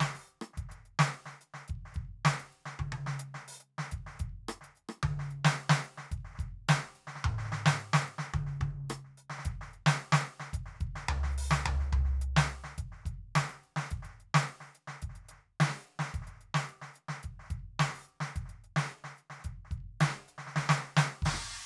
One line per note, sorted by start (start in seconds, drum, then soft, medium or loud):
0.01 closed hi-hat medium
0.01 snare medium
0.14 open hi-hat medium
0.14 snare soft
0.27 closed hi-hat soft
0.27 hi-hat pedal soft
0.42 cross-stick medium
0.54 closed hi-hat medium
0.54 kick soft
0.54 snare soft
0.64 kick soft
0.70 closed hi-hat medium
0.70 snare soft
0.74 snare soft
0.78 snare soft
0.86 closed hi-hat soft
1.00 snare loud
1.14 closed hi-hat soft
1.27 snare soft
1.42 open hi-hat medium
1.42 hi-hat pedal medium
1.55 snare soft
1.69 closed hi-hat medium
1.69 kick soft
1.76 kick soft
1.86 snare soft
1.93 snare soft
1.93 closed hi-hat medium
1.97 kick soft
2.06 kick soft
2.26 closed hi-hat loud
2.26 snare loud
2.36 closed hi-hat medium
2.36 snare soft
2.53 closed hi-hat soft
2.66 snare medium
2.80 kick soft
2.80 high tom medium
2.93 high tom loud
3.07 snare medium
3.20 closed hi-hat loud
3.35 snare soft
3.49 open hi-hat loud
3.61 closed hi-hat medium
3.79 snare medium
3.92 closed hi-hat medium
3.92 kick soft
3.99 kick soft
4.07 snare soft
4.16 closed hi-hat medium
4.16 snare soft
4.21 kick soft
4.30 kick soft
4.49 closed hi-hat loud
4.49 cross-stick medium
4.62 open hi-hat medium
4.62 snare soft
4.76 closed hi-hat soft
4.76 hi-hat pedal soft
4.90 cross-stick medium
5.04 kick soft
5.04 high tom loud
5.10 kick soft
5.20 snare soft
5.31 open hi-hat soft
5.45 snare loud
5.59 closed hi-hat soft
5.70 snare loud
5.85 closed hi-hat medium
5.98 snare soft
6.12 closed hi-hat medium
6.12 kick soft
6.18 kick soft
6.21 kick soft
6.25 snare soft
6.32 snare soft
6.36 kick soft
6.36 snare soft
6.41 closed hi-hat medium
6.49 kick soft
6.69 closed hi-hat loud
6.69 snare loud
6.81 snare soft
6.96 closed hi-hat soft
7.08 snare soft
7.16 snare soft
7.25 kick soft
7.25 mid tom loud
7.31 kick soft
7.39 snare soft
7.45 snare soft
7.53 snare medium
7.67 snare loud
7.81 closed hi-hat medium
7.94 snare loud
8.08 closed hi-hat soft
8.19 snare medium
8.29 hi-hat pedal soft
8.34 kick soft
8.34 high tom loud
8.41 kick soft
8.44 kick soft
8.44 snare soft
8.61 kick soft
8.61 high tom loud
8.69 kick soft
8.90 closed hi-hat loud
8.90 cross-stick medium
9.05 snare soft
9.18 hi-hat pedal soft
9.18 open hi-hat medium
9.30 snare medium
9.39 snare soft
9.46 closed hi-hat loud
9.46 kick medium
9.53 kick soft
9.56 kick soft
9.62 snare soft
9.74 closed hi-hat soft
9.87 snare loud
10.01 closed hi-hat soft
10.13 snare loud
10.27 closed hi-hat soft
10.41 snare medium
10.54 closed hi-hat loud
10.54 kick soft
10.60 kick soft
10.67 snare soft
10.75 snare soft
10.81 kick medium
10.81 closed hi-hat medium
10.88 kick soft
10.96 snare medium
11.09 floor tom loud
11.24 snare soft
11.32 hi-hat pedal medium
11.39 open hi-hat loud
11.52 snare loud
11.52 hi-hat pedal soft
11.66 kick soft
11.66 floor tom loud
11.81 snare soft
11.93 kick soft
11.93 floor tom loud
12.00 kick soft
12.06 snare soft
12.14 snare soft
12.22 closed hi-hat medium
12.37 snare loud
12.50 closed hi-hat soft
12.65 snare soft
12.79 closed hi-hat loud
12.79 kick soft
12.93 snare soft
12.99 snare soft
13.04 closed hi-hat medium
13.04 kick soft
13.04 snare soft
13.15 kick soft
13.36 closed hi-hat loud
13.36 snare loud
13.48 closed hi-hat medium
13.48 snare soft
13.64 closed hi-hat soft
13.77 snare medium
13.91 closed hi-hat medium
13.91 kick soft
13.98 kick soft
14.03 closed hi-hat medium
14.03 snare soft
14.10 snare soft
14.21 closed hi-hat soft
14.35 snare loud
14.49 closed hi-hat soft
14.61 snare soft
14.76 closed hi-hat medium
14.88 snare medium
15.03 closed hi-hat medium
15.03 kick soft
15.10 snare soft
15.15 closed hi-hat medium
15.15 snare soft
15.23 snare soft
15.26 closed hi-hat medium
15.26 snare soft
15.32 snare soft
15.61 closed hi-hat loud
15.61 snare loud
15.70 snare soft
15.75 open hi-hat soft
15.83 closed hi-hat soft
15.83 hi-hat pedal medium
16.00 snare medium
16.11 snare soft
16.11 hi-hat pedal soft
16.15 closed hi-hat medium
16.15 kick soft
16.20 kick soft
16.20 snare soft
16.28 closed hi-hat medium
16.28 snare soft
16.32 snare soft
16.36 snare soft
16.41 closed hi-hat soft
16.55 snare medium
16.69 closed hi-hat soft
16.82 snare soft
16.94 closed hi-hat medium
16.94 hi-hat pedal medium
17.09 snare medium
17.24 closed hi-hat medium
17.24 kick soft
17.40 snare soft
17.45 snare soft
17.49 closed hi-hat medium
17.49 kick soft
17.49 snare soft
17.60 kick soft
17.80 closed hi-hat medium
17.80 snare loud
17.90 snare soft
17.96 open hi-hat medium
18.05 hi-hat pedal medium
18.09 closed hi-hat soft
18.21 snare medium
18.35 closed hi-hat medium
18.35 kick soft
18.35 snare soft
18.42 kick soft
18.46 closed hi-hat medium
18.46 snare soft
18.53 snare soft
18.65 closed hi-hat soft
18.77 snare loud
18.92 closed hi-hat soft
19.05 snare soft
19.16 closed hi-hat soft
19.16 hi-hat pedal soft
19.31 snare soft
19.40 snare soft
19.45 closed hi-hat medium
19.45 kick soft
19.66 snare soft
19.72 kick soft
19.72 closed hi-hat soft
19.78 kick soft
19.81 kick soft
20.01 open hi-hat loud
20.01 snare loud
20.11 snare soft
20.29 hi-hat pedal soft
20.29 open hi-hat medium
20.39 snare soft
20.47 snare soft
20.57 kick soft
20.57 snare loud
20.70 snare loud
20.81 snare soft
20.97 snare loud
21.23 kick medium
21.23 snare loud
21.23 hi-hat pedal soft
21.23 crash loud
21.29 kick soft
21.33 kick soft
21.33 cross-stick medium
21.44 open hi-hat soft